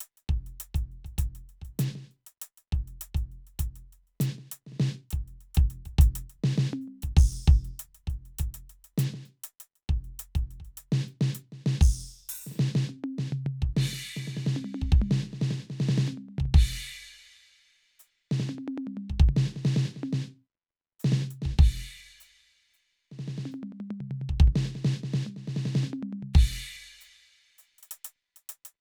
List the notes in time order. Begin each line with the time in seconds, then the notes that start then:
0.01 closed hi-hat
0.18 closed hi-hat
0.29 kick, closed hi-hat
0.47 closed hi-hat
0.60 closed hi-hat
0.75 kick, closed hi-hat
0.92 closed hi-hat
1.05 kick, closed hi-hat
1.19 closed hi-hat, kick
1.35 closed hi-hat
1.50 closed hi-hat
1.62 kick, closed hi-hat
1.80 closed hi-hat, snare
1.96 snare
2.12 closed hi-hat
2.27 closed hi-hat
2.42 closed hi-hat
2.58 closed hi-hat
2.73 kick, closed hi-hat
2.88 closed hi-hat
3.02 closed hi-hat
3.15 kick, closed hi-hat
3.32 closed hi-hat
3.47 closed hi-hat
3.60 closed hi-hat, kick
3.76 closed hi-hat
3.93 closed hi-hat
4.08 closed hi-hat
4.21 closed hi-hat, snare
4.39 snare
4.52 closed hi-hat
4.67 snare
4.73 snare
4.77 snare
4.80 snare
5.11 closed hi-hat, kick
5.28 closed hi-hat
5.41 closed hi-hat
5.55 closed hi-hat, kick
5.71 closed hi-hat
5.86 kick, closed hi-hat
5.99 closed hi-hat, kick
6.16 closed hi-hat
6.30 closed hi-hat
6.44 snare
6.58 snare
6.74 high tom
6.82 hi-hat pedal
6.88 mid tom
7.03 kick, closed hi-hat
7.17 kick, crash
7.33 closed hi-hat
7.48 kick, closed hi-hat
7.65 closed hi-hat
7.80 closed hi-hat
7.95 closed hi-hat
8.08 kick, closed hi-hat
8.26 closed hi-hat
8.39 closed hi-hat, kick
8.55 closed hi-hat
8.70 closed hi-hat
8.85 closed hi-hat
8.98 closed hi-hat, snare
9.14 snare
9.26 closed hi-hat
9.44 closed hi-hat
9.61 closed hi-hat
9.76 closed hi-hat
9.90 kick, closed hi-hat
10.05 closed hi-hat
10.20 closed hi-hat
10.36 kick, closed hi-hat
10.51 closed hi-hat
10.61 kick
10.65 closed hi-hat
10.78 closed hi-hat
10.93 snare
11.09 closed hi-hat
11.21 snare
11.35 closed hi-hat
11.53 snare
11.67 snare
11.81 kick, crash
12.29 open hi-hat
12.47 snare
12.52 snare, hi-hat pedal
12.56 snare
12.60 snare
12.76 snare
12.90 high tom
13.04 high tom
13.19 snare
13.33 floor tom
13.47 floor tom
13.62 kick
13.77 snare, crash
13.94 snare
14.17 snare
14.28 snare
14.37 snare
14.47 snare
14.52 hi-hat pedal
14.57 high tom
14.65 mid tom
14.75 high tom
14.82 kick
14.93 kick
15.02 mid tom
15.12 snare
15.24 snare
15.34 snare
15.42 snare
15.51 snare
15.61 snare
15.71 snare
15.81 snare
15.89 snare
15.98 snare
16.06 hi-hat pedal, high tom
16.18 mid tom
16.29 mid tom
16.39 kick, floor tom
16.46 floor tom
16.55 kick, crash
18.00 hi-hat pedal
18.32 snare
18.40 snare
18.50 high tom
18.59 high tom
18.68 high tom
18.78 high tom
18.88 mid tom
18.98 mid tom
19.10 kick
19.29 floor tom
19.37 snare
19.47 snare
19.57 snare
19.66 snare
19.77 snare
19.86 snare
19.97 snare
20.04 high tom
20.13 snare
21.00 hi-hat pedal
21.05 snare
21.13 snare
21.23 floor tom
21.31 closed hi-hat
21.43 kick, snare
21.59 kick, crash
22.21 hi-hat pedal
22.74 hi-hat pedal
23.12 snare
23.20 snare
23.28 snare
23.46 high tom
23.52 hi-hat pedal, high tom
23.64 mid tom
23.73 mid tom
23.81 mid tom
23.91 mid tom
24.01 floor tom
24.12 floor tom
24.22 floor tom
24.30 kick
24.40 kick
24.48 floor tom
24.56 snare
24.66 snare
24.76 snare
24.85 snare
25.04 snare
25.14 snare
25.27 mid tom
25.37 snare
25.48 snare
25.57 snare
25.66 snare
25.76 snare
25.84 high tom
25.94 high tom
26.03 mid tom
26.23 floor tom
26.34 kick, crash
27.01 hi-hat pedal
27.59 hi-hat pedal
27.79 closed hi-hat
27.83 closed hi-hat
27.91 closed hi-hat
28.05 closed hi-hat
28.37 closed hi-hat
28.50 closed hi-hat
28.66 closed hi-hat